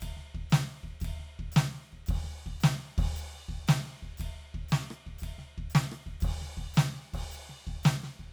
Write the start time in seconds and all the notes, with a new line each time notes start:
0.01 kick, ride, percussion
0.17 snare
0.35 kick
0.50 snare, ride, percussion
0.69 snare
0.84 kick
1.01 kick, percussion
1.05 ride
1.20 snare
1.40 kick
1.52 percussion
1.57 snare, ride
1.75 snare
1.93 kick
2.07 kick, crash, percussion
2.24 snare
2.47 kick
2.61 snare, ride, percussion
2.80 snare
2.98 kick, crash
3.17 ride, percussion
3.34 snare
3.49 kick
3.68 snare, ride, percussion
3.87 snare
4.03 kick
4.18 kick, ride, percussion
4.55 kick
4.69 snare, ride, percussion
4.91 cross-stick
5.07 kick
5.19 kick, percussion
5.24 ride
5.39 snare
5.58 kick
5.70 percussion
5.75 snare, ride
5.92 cross-stick
6.07 kick
6.21 kick, crash, percussion
6.42 snare
6.58 kick
6.74 snare, ride, percussion
6.94 snare
7.14 kick, crash
7.32 ride, percussion
7.50 snare
7.67 kick
7.84 snare, ride, percussion
8.04 snare
8.20 kick